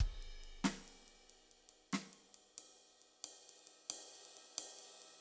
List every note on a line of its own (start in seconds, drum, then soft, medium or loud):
0.00 kick medium
0.00 ride soft
0.22 ride soft
0.43 ride soft
0.64 snare loud
0.64 ride medium
0.88 ride soft
1.08 ride soft
1.29 ride soft
1.51 ride soft
1.69 ride soft
1.93 snare medium
1.93 ride medium
2.13 ride soft
2.34 ride soft
2.58 ride medium
2.80 ride soft
3.01 ride soft
3.24 ride medium
3.49 ride soft
3.59 ride soft
3.67 ride soft
3.90 ride loud
4.15 ride soft
4.25 ride soft
4.37 ride soft
4.58 ride loud
4.79 ride soft
5.02 ride soft